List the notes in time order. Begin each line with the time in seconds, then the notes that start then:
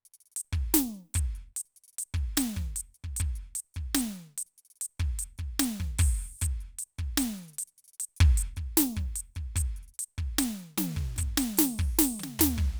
0.05 closed hi-hat
0.14 closed hi-hat
0.20 closed hi-hat
0.26 closed hi-hat
0.32 closed hi-hat
0.36 closed hi-hat
0.53 kick, closed hi-hat
0.73 closed hi-hat, kick, snare
0.94 closed hi-hat
1.14 closed hi-hat, kick
1.35 closed hi-hat
1.47 closed hi-hat
1.56 closed hi-hat
1.65 closed hi-hat
1.76 closed hi-hat
1.84 closed hi-hat
1.88 closed hi-hat
1.93 closed hi-hat
1.98 closed hi-hat
2.14 kick, closed hi-hat
2.37 closed hi-hat, snare
2.56 kick, closed hi-hat
2.76 closed hi-hat
2.94 closed hi-hat
3.04 kick
3.16 closed hi-hat, kick
3.35 closed hi-hat
3.55 closed hi-hat
3.74 kick, closed hi-hat
3.95 closed hi-hat, snare
4.14 closed hi-hat
4.38 closed hi-hat
4.46 closed hi-hat
4.58 closed hi-hat
4.65 closed hi-hat
4.70 closed hi-hat
4.75 closed hi-hat
4.81 closed hi-hat
4.99 kick, closed hi-hat
5.19 closed hi-hat
5.38 kick, closed hi-hat
5.59 closed hi-hat, snare
5.79 kick, closed hi-hat
5.99 open hi-hat, kick
6.39 closed hi-hat, kick, hi-hat pedal
6.60 closed hi-hat
6.79 closed hi-hat
6.98 kick, closed hi-hat
7.17 closed hi-hat, snare
7.37 closed hi-hat
7.43 closed hi-hat
7.48 closed hi-hat
7.58 closed hi-hat
7.67 closed hi-hat
7.78 closed hi-hat
7.84 closed hi-hat
7.93 closed hi-hat
8.00 closed hi-hat
8.16 kick, closed hi-hat
8.37 closed hi-hat
8.56 kick, closed hi-hat
8.77 closed hi-hat, snare
8.96 kick, closed hi-hat
9.16 closed hi-hat
9.35 kick, closed hi-hat
9.56 closed hi-hat, kick
9.76 closed hi-hat
9.83 closed hi-hat
9.88 closed hi-hat
9.94 closed hi-hat
9.99 closed hi-hat
10.18 kick, closed hi-hat
10.38 closed hi-hat, snare
10.59 closed hi-hat
10.78 snare, high tom
10.96 kick, closed hi-hat
11.16 closed hi-hat, kick, snare
11.37 closed hi-hat, snare
11.57 open hi-hat, snare
11.78 kick, open hi-hat
11.99 open hi-hat, snare
12.19 hi-hat pedal, mid tom
12.23 snare
12.39 snare, floor tom
12.58 kick